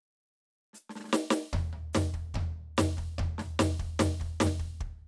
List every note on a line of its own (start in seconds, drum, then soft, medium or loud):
0.73 snare soft
0.73 hi-hat pedal medium
0.89 snare soft
0.95 snare soft
1.00 snare soft
1.04 snare soft
1.08 snare soft
1.13 snare loud
1.30 snare loud
1.53 kick medium
1.53 floor tom loud
1.73 kick soft
1.73 floor tom medium
1.93 snare loud
1.93 floor tom loud
1.93 hi-hat pedal medium
2.14 kick soft
2.14 floor tom soft
2.34 kick medium
2.34 floor tom loud
2.77 snare loud
2.77 floor tom loud
2.77 hi-hat pedal medium
2.97 kick soft
2.97 floor tom soft
3.18 kick medium
3.18 floor tom loud
3.18 hi-hat pedal soft
3.38 snare medium
3.38 floor tom medium
3.59 snare loud
3.59 floor tom loud
3.79 kick medium
3.79 floor tom medium
3.99 snare loud
3.99 floor tom loud
4.20 kick soft
4.20 floor tom soft
4.40 snare loud
4.40 floor tom loud
4.45 snare medium
4.59 kick soft
4.80 kick medium